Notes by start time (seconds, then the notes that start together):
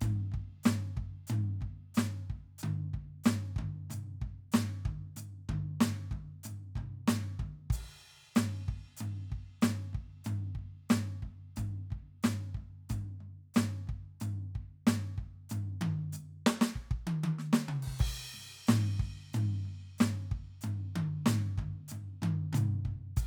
0.01 kick, floor tom, hi-hat pedal
0.32 kick, floor tom
0.64 snare, floor tom, hi-hat pedal
0.97 kick, floor tom
1.27 floor tom, hi-hat pedal
1.61 kick, floor tom
1.94 snare, floor tom, hi-hat pedal
2.30 kick, floor tom
2.58 hi-hat pedal
2.63 floor tom, high tom
2.94 kick, floor tom
3.24 snare, floor tom, hi-hat pedal
3.56 kick, floor tom, high tom
3.90 floor tom, hi-hat pedal, mid tom
4.22 kick, floor tom
4.52 snare, floor tom, hi-hat pedal
4.85 kick, floor tom, high tom
5.17 floor tom, hi-hat pedal
5.49 kick, floor tom, high tom
5.81 snare, floor tom, hi-hat pedal
6.11 kick, floor tom, high tom
6.44 floor tom, hi-hat pedal
6.76 kick, floor tom, mid tom
7.08 snare, floor tom, hi-hat pedal
7.40 kick, floor tom, high tom
7.70 kick, hi-hat pedal, crash
8.35 snare, floor tom, hi-hat pedal
8.68 kick, floor tom
8.97 floor tom, hi-hat pedal
9.30 kick, floor tom
9.62 snare, floor tom, hi-hat pedal
9.93 kick, floor tom
10.24 floor tom, hi-hat pedal
10.55 kick, floor tom
10.90 snare, floor tom, hi-hat pedal
11.23 kick, floor tom
11.56 kick, floor tom, hi-hat pedal
11.91 kick, floor tom
12.23 snare, floor tom, hi-hat pedal
12.55 kick, floor tom
12.89 kick, floor tom, hi-hat pedal
12.96 floor tom
13.21 floor tom
13.54 snare, floor tom, hi-hat pedal
13.87 kick, floor tom
14.20 floor tom, hi-hat pedal
14.55 kick, floor tom
14.87 snare, floor tom, hi-hat pedal
15.18 kick, floor tom
15.50 floor tom, hi-hat pedal
15.81 high tom, floor tom
16.13 floor tom, hi-hat pedal
16.47 snare
16.61 snare
16.76 kick
16.91 kick
17.07 high tom
17.24 high tom
17.39 snare
17.53 snare
17.69 mid tom
17.83 crash
17.87 kick
17.99 kick, crash
18.34 floor tom
18.67 snare, floor tom, hi-hat pedal
19.00 kick, floor tom
19.34 floor tom, hi-hat pedal
19.65 floor tom
19.98 snare, floor tom, hi-hat pedal
20.32 kick, floor tom
20.61 floor tom, hi-hat pedal
20.96 floor tom, high tom
21.26 snare, floor tom, hi-hat pedal
21.58 kick, floor tom, high tom
21.88 floor tom, hi-hat pedal
22.22 floor tom, high tom
22.53 floor tom, hi-hat pedal, mid tom
22.85 kick, floor tom
23.17 kick, hi-hat pedal, crash